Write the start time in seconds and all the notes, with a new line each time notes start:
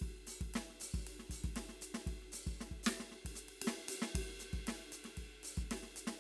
0.01 kick, ride
0.16 snare
0.28 snare, hi-hat pedal, ride
0.42 kick, ride
0.55 snare, ride
0.71 snare
0.81 snare, hi-hat pedal, ride
0.95 kick, ride
1.08 ride
1.20 snare
1.30 kick, hi-hat pedal, ride
1.45 kick, ride
1.57 snare, ride
1.70 snare
1.82 hi-hat pedal, ride
1.95 snare, ride
2.06 kick, hi-hat pedal, ride
2.23 snare
2.33 snare, hi-hat pedal, ride
2.47 kick, ride
2.61 snare, ride
2.72 kick
2.84 snare, hi-hat pedal, ride
3.01 snare
3.10 snare, hi-hat pedal
3.26 kick, ride
3.36 snare, hi-hat pedal
3.49 ride
3.61 hi-hat pedal, ride
3.68 snare
3.89 hi-hat pedal, ride
4.03 snare
4.16 kick, ride
4.30 snare
4.40 snare, hi-hat pedal, ride
4.54 kick, ride
4.68 snare, ride
4.80 snare
4.93 hi-hat pedal, ride
5.05 snare, ride
5.18 kick, ride
5.33 snare
5.44 snare, hi-hat pedal, ride
5.58 kick, ride
5.72 snare, ride
5.84 snare
5.97 hi-hat pedal, ride
6.08 snare, ride